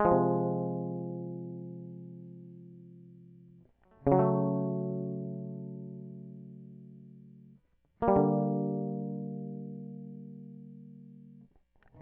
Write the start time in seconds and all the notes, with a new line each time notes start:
0.00 G#3
0.06 F3
0.13 C3
4.08 C#3
4.13 F#3
4.20 A3
8.03 A#3
8.09 G3
8.18 D3